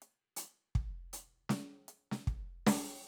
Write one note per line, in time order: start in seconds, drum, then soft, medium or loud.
0.02 closed hi-hat soft
0.37 closed hi-hat loud
0.75 kick medium
0.75 closed hi-hat soft
1.13 closed hi-hat loud
1.50 snare medium
1.50 closed hi-hat medium
1.88 closed hi-hat medium
2.12 snare medium
2.27 kick medium
2.27 closed hi-hat soft
2.67 open hi-hat loud
2.67 snare loud